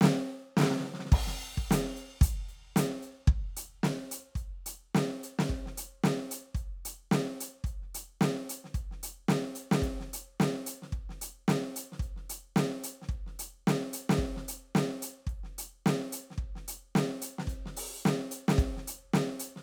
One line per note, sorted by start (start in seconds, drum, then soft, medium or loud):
0.02 snare loud
0.04 snare loud
0.42 snare soft
0.57 snare loud
0.60 snare loud
0.63 snare medium
0.65 snare medium
0.76 snare soft
0.80 snare medium
0.84 snare soft
0.88 snare soft
0.94 snare medium
0.99 snare medium
1.05 snare soft
1.12 kick loud
1.12 snare soft
1.12 crash loud
1.27 snare soft
1.40 closed hi-hat soft
1.57 kick medium
1.71 closed hi-hat loud
1.71 snare loud
1.96 closed hi-hat medium
2.21 closed hi-hat loud
2.21 kick loud
2.48 closed hi-hat soft
2.76 closed hi-hat loud
2.76 snare loud
3.02 closed hi-hat soft
3.27 kick loud
3.57 closed hi-hat loud
3.83 snare loud
4.11 closed hi-hat loud
4.35 closed hi-hat soft
4.35 kick medium
4.66 closed hi-hat loud
4.95 snare loud
5.23 closed hi-hat medium
5.39 snare loud
5.49 kick medium
5.66 snare soft
5.77 closed hi-hat loud
6.04 snare loud
6.31 closed hi-hat loud
6.55 closed hi-hat soft
6.55 kick medium
6.76 snare soft
6.85 closed hi-hat loud
7.11 snare loud
7.41 closed hi-hat loud
7.64 closed hi-hat soft
7.64 kick medium
7.82 snare soft
7.95 closed hi-hat loud
8.21 snare loud
8.49 closed hi-hat loud
8.64 snare soft
8.74 closed hi-hat soft
8.74 kick medium
8.91 snare soft
9.03 closed hi-hat loud
9.29 snare loud
9.55 closed hi-hat medium
9.71 snare loud
9.82 kick medium
9.82 closed hi-hat medium
10.00 snare soft
10.07 snare soft
10.13 closed hi-hat loud
10.40 snare loud
10.66 closed hi-hat loud
10.82 snare soft
10.92 kick medium
10.92 closed hi-hat soft
11.09 snare soft
11.21 closed hi-hat loud
11.48 snare loud
11.76 closed hi-hat loud
11.92 snare soft
11.99 closed hi-hat soft
11.99 kick medium
12.16 snare soft
12.30 closed hi-hat loud
12.56 snare loud
12.84 closed hi-hat loud
13.02 snare soft
13.09 kick medium
13.09 closed hi-hat soft
13.26 snare soft
13.39 closed hi-hat loud
13.67 snare loud
13.93 closed hi-hat loud
14.09 snare loud
14.18 kick medium
14.18 closed hi-hat soft
14.36 snare soft
14.48 closed hi-hat loud
14.75 snare loud
15.02 closed hi-hat loud
15.27 kick medium
15.27 closed hi-hat soft
15.44 snare soft
15.58 closed hi-hat loud
15.86 snare loud
16.12 closed hi-hat loud
16.30 snare soft
16.38 kick medium
16.56 snare soft
16.68 closed hi-hat loud
16.95 snare loud
17.22 closed hi-hat loud
17.39 snare medium
17.47 closed hi-hat soft
17.47 kick medium
17.66 snare soft
17.77 open hi-hat loud
18.01 snare loud
18.01 hi-hat pedal soft
18.31 closed hi-hat loud
18.48 snare loud
18.58 kick loud
18.58 closed hi-hat medium
18.77 snare soft
18.87 closed hi-hat loud
19.14 snare loud
19.40 closed hi-hat loud
19.56 snare soft